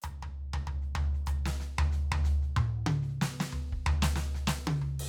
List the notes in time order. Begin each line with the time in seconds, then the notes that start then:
0.02 hi-hat pedal, floor tom
0.22 floor tom
0.53 floor tom
0.67 floor tom
0.82 snare
0.95 floor tom
1.14 snare
1.26 hi-hat pedal, floor tom
1.45 snare
1.60 snare
1.78 floor tom
1.92 snare
2.12 floor tom
2.24 snare
2.42 snare
2.56 mid tom
2.86 high tom
3.02 snare
3.09 snare
3.21 snare
3.40 snare
3.52 floor tom
3.72 kick
3.86 floor tom
4.02 snare
4.16 snare
4.34 snare
4.47 snare
4.67 high tom
4.81 floor tom
4.99 crash